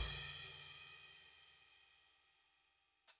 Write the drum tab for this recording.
HH |-----------------------p|